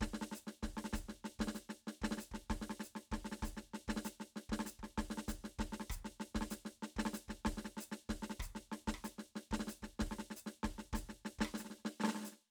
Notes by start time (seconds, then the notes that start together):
0.01 kick, snare
0.14 snare
0.22 snare
0.35 hi-hat pedal
0.47 snare
0.63 kick, snare
0.77 snare
0.85 snare
0.93 kick, snare, hi-hat pedal
1.09 snare
1.25 snare
1.39 kick, snare
1.48 snare
1.55 snare, hi-hat pedal
1.70 snare
1.87 snare
2.02 kick, snare
2.11 snare
2.18 snare, hi-hat pedal
2.32 kick, snare
2.50 kick, snare
2.62 snare
2.70 snare
2.84 hi-hat pedal
2.96 snare
3.12 kick, snare
3.25 snare
3.32 snare
3.39 kick, snare
3.43 snare, hi-hat pedal
3.57 snare
3.74 snare
3.88 kick, snare
3.97 snare
4.05 snare, hi-hat pedal
4.20 snare
4.36 snare
4.49 kick, snare
4.60 snare
4.66 snare, hi-hat pedal
4.79 kick
4.83 snare
4.98 kick, snare
5.10 snare
5.18 snare
5.28 kick, snare, hi-hat pedal
5.44 snare
5.59 kick, snare
5.73 snare
5.80 snare
5.90 kick, cross-stick, hi-hat pedal
6.05 snare
6.20 snare
6.35 kick, snare
6.41 snare
6.51 snare, hi-hat pedal
6.65 snare
6.83 snare
6.97 kick, snare
7.06 snare
7.14 snare, hi-hat pedal
7.28 kick, snare
7.45 kick, snare
7.58 snare
7.65 snare
7.77 snare, hi-hat pedal
7.92 snare
8.09 kick, snare
8.23 snare
8.30 snare
8.40 kick, cross-stick, hi-hat pedal
8.55 snare
8.72 snare
8.88 kick, snare
8.94 kick, cross-stick
9.04 snare, hi-hat pedal
9.19 snare
9.36 snare
9.51 kick, snare
9.60 snare
9.67 snare, hi-hat pedal
9.83 kick, snare
10.00 kick, snare
10.11 snare
10.19 snare
10.31 snare
10.37 hi-hat pedal
10.46 snare
10.64 kick, snare
10.79 snare
10.93 kick, snare, hi-hat pedal
11.01 kick
11.09 snare
11.25 snare
11.39 kick, snare
11.45 cross-stick
11.54 snare, hi-hat pedal
11.60 snare
11.65 snare
11.70 snare
11.79 snare
11.85 snare
12.00 snare
12.04 snare
12.08 snare
12.11 snare
12.15 snare
12.18 snare
12.21 snare
12.23 snare, hi-hat pedal
12.27 snare
12.32 snare